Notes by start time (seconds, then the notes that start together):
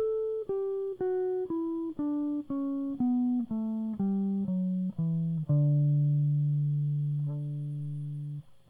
0.00 A4
0.50 G4
1.01 F#4
1.51 E4
2.00 D4
2.51 C#4
3.01 B3
3.51 A3
4.01 G3
4.53 F#3
5.04 E3
5.51 D3